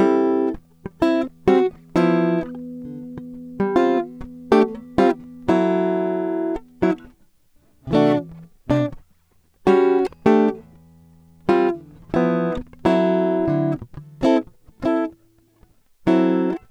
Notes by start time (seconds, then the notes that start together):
0.00 G3 C4 E4 A4
1.04 C4 E4
1.50 G3 C4 F#4
1.98 F3 B3 E4
3.62 G3
3.78 C4 F4
4.54 A3 D4 G4
5.00 G3 C4 F4
5.50 F#3 E4 A4
6.84 F#3 E4
7.90 C3 E3
7.95 A3 D4 F#4
8.71 C3 D4 F#4
9.69 G3 C#4 F#4
10.28 A3 D4 G4
11.51 G3 C4 F4
12.16 F3 B3 E4
12.87 F#3 C4 E4 A4
13.48 D3 F#3
13.96 D3
14.25 C4 E4 A4
14.85 C4 E4
14.89 A4
16.09 F#3 C4 E4 A4